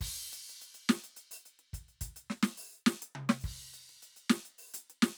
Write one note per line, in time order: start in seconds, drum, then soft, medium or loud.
0.01 kick soft
0.01 crash loud
0.07 kick soft
0.33 closed hi-hat medium
0.49 closed hi-hat medium
0.62 closed hi-hat medium
0.75 closed hi-hat medium
0.89 snare loud
1.04 closed hi-hat medium
1.17 closed hi-hat medium
1.31 open hi-hat loud
1.46 closed hi-hat soft
1.59 closed hi-hat soft
1.74 closed hi-hat medium
1.74 kick soft
1.89 closed hi-hat soft
2.01 closed hi-hat loud
2.01 kick soft
2.07 kick soft
2.16 closed hi-hat medium
2.25 open hi-hat soft
2.30 snare medium
2.43 snare loud
2.47 hi-hat pedal soft
2.57 open hi-hat medium
2.72 open hi-hat soft
2.76 hi-hat pedal soft
2.87 snare loud
3.02 closed hi-hat loud
3.15 mid tom medium
3.29 snare loud
3.41 kick soft
3.41 hi-hat pedal medium
3.45 crash medium
3.50 kick soft
3.62 closed hi-hat soft
3.74 closed hi-hat medium
3.89 closed hi-hat soft
4.03 closed hi-hat soft
4.16 closed hi-hat soft
4.30 snare loud
4.45 closed hi-hat medium
4.59 open hi-hat medium
4.71 closed hi-hat loud
4.71 hi-hat pedal soft
4.90 closed hi-hat medium
5.02 snare loud